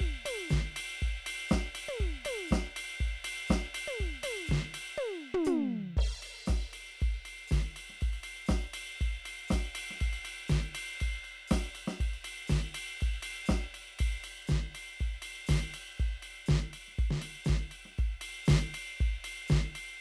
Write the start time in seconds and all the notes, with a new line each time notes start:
0.01 kick
0.26 high tom, ride
0.50 kick, snare, hi-hat pedal
0.77 ride
1.02 kick
1.27 ride
1.49 kick, snare, hi-hat pedal
1.75 ride
1.89 open hi-hat, high tom
2.01 kick
2.25 closed hi-hat, high tom, ride
2.48 kick, hi-hat pedal
2.53 snare
2.77 ride
3.01 kick
3.25 ride
3.48 kick, snare, hi-hat pedal
3.75 ride
3.88 closed hi-hat, high tom
4.01 kick
4.24 high tom, ride
4.47 kick, hi-hat pedal
4.52 snare
4.74 ride
4.98 high tom
5.34 floor tom
5.45 floor tom, hi-hat pedal
5.97 kick, crash
6.23 ride
6.47 kick, snare, hi-hat pedal, ride
6.73 ride
7.01 kick, ride
7.26 ride
7.48 snare, hi-hat pedal
7.52 kick, ride
7.76 ride
7.90 snare
8.01 kick, ride
8.13 ride
8.24 ride
8.47 kick, snare, hi-hat pedal, ride
8.74 ride
9.01 kick, ride
9.26 ride
9.48 snare, hi-hat pedal, ride
9.53 kick
9.75 ride
9.91 snare
10.01 kick, ride
10.13 ride
10.25 ride
10.48 kick, snare, hi-hat pedal, ride
10.75 ride
11.01 kick, ride
11.25 ride
11.48 kick, snare, hi-hat pedal, ride
11.75 ride
11.88 snare
12.01 kick, ride
12.14 ride
12.25 ride
12.48 kick, snare, hi-hat pedal, ride
12.75 ride
13.01 kick, ride
13.23 ride bell
13.46 snare, hi-hat pedal, ride
13.51 kick
13.75 ride bell
13.99 kick, ride
14.24 ride bell
14.48 snare, hi-hat pedal, ride
14.52 kick
14.75 ride bell
15.00 kick, ride
15.22 ride bell
15.47 kick, snare, hi-hat pedal, ride
15.74 ride bell
16.00 kick, ride
16.23 ride bell
16.47 snare, hi-hat pedal, ride
16.51 kick
16.74 ride bell
16.88 snare
16.99 kick, ride
17.11 snare
17.22 ride bell
17.45 snare, hi-hat pedal, ride
17.50 kick
17.72 ride bell
17.86 snare
17.99 kick, ride
18.22 ride bell
18.46 snare, hi-hat pedal, ride
18.51 kick
18.75 ride bell
19.01 kick, ride
19.25 ride bell
19.48 kick, snare, hi-hat pedal, ride
19.76 ride bell